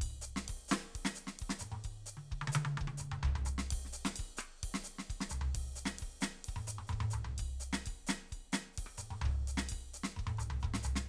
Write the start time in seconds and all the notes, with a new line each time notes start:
0.01 kick, ride bell
0.10 kick
0.21 hi-hat pedal
0.26 ride
0.36 snare
0.43 hi-hat pedal
0.48 kick, ride
0.68 snare, hi-hat pedal
0.89 hi-hat pedal
0.95 kick, ride
1.05 snare
1.15 hi-hat pedal, ride
1.27 snare
1.39 kick, ride
1.49 snare
1.59 hi-hat pedal, mid tom
1.72 mid tom
1.84 kick, ride bell
2.06 hi-hat pedal, ride
2.17 high tom
2.31 kick, high tom
2.41 high tom
2.47 high tom
2.52 hi-hat pedal, high tom
2.65 high tom
2.77 kick, high tom
2.87 kick, high tom
2.97 hi-hat pedal, mid tom
3.11 mid tom
3.23 kick, floor tom
3.35 floor tom
3.45 floor tom, hi-hat pedal
3.58 snare
3.70 kick, ride
3.79 kick
3.82 kick, snare
3.93 hi-hat pedal, ride
4.05 snare
4.12 hi-hat pedal, ride bell
4.19 kick
4.37 cross-stick, hi-hat pedal
4.57 hi-hat pedal
4.63 kick, ride
4.71 kick, snare
4.84 hi-hat pedal, ride
4.98 snare
5.05 hi-hat pedal
5.10 kick, ride bell
5.20 snare
5.29 floor tom, hi-hat pedal
5.41 floor tom
5.54 kick, ride
5.63 kick
5.75 hi-hat pedal, ride
5.85 snare
5.95 hi-hat pedal, ride
6.02 kick
6.21 snare, hi-hat pedal
6.44 kick, ride
6.54 kick, mid tom
6.67 hi-hat pedal, mid tom
6.78 mid tom
6.87 hi-hat pedal, mid tom
6.92 kick
7.00 mid tom
7.10 floor tom, hi-hat pedal
7.24 floor tom
7.38 kick, ride bell
7.48 kick
7.60 hi-hat pedal, ride
7.73 snare
7.86 kick, ride bell
7.95 kick
8.07 snare, hi-hat pedal
8.27 hi-hat pedal
8.32 kick, ride bell
8.52 snare, hi-hat pedal
8.73 hi-hat pedal
8.78 kick, ride
8.86 kick, cross-stick
8.97 kick, hi-hat pedal, mid tom
9.10 mid tom
9.21 kick, floor tom
9.33 kick
9.47 hi-hat pedal, ride
9.57 snare
9.69 kick, ride bell
9.93 hi-hat pedal, ride
10.03 snare
10.16 kick, mid tom
10.27 kick, mid tom
10.37 floor tom, hi-hat pedal, ride
10.50 floor tom
10.60 hi-hat pedal, mid tom
10.64 kick
10.74 snare
10.83 floor tom, hi-hat pedal
10.95 snare